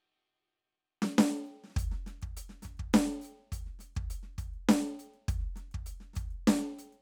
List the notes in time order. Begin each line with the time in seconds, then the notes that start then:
1.02 snare
1.18 snare
1.32 snare
1.45 hi-hat pedal
1.64 snare
1.68 snare
1.70 snare
1.75 closed hi-hat, kick, snare
1.91 snare
2.06 snare, closed hi-hat
2.22 kick, closed hi-hat
2.37 closed hi-hat
2.49 snare
2.62 closed hi-hat, kick, snare
2.77 kick, closed hi-hat
2.93 closed hi-hat, snare
3.21 closed hi-hat, hi-hat pedal
3.38 closed hi-hat
3.52 closed hi-hat, kick
3.66 snare
3.79 closed hi-hat, snare
3.95 kick, closed hi-hat
4.10 closed hi-hat
4.23 snare
4.38 closed hi-hat, kick
4.54 closed hi-hat
4.69 closed hi-hat, snare
4.99 closed hi-hat
5.14 closed hi-hat
5.28 closed hi-hat, kick
5.39 snare
5.56 snare, closed hi-hat
5.71 kick, closed hi-hat
5.86 closed hi-hat
6.00 snare
6.13 closed hi-hat, kick, snare
6.31 closed hi-hat
6.47 closed hi-hat, snare
6.55 snare
6.79 closed hi-hat
6.93 closed hi-hat